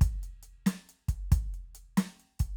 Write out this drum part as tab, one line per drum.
HH |xxxxxxxxxxxx|
SD |---o-----o--|
BD |o----oo----o|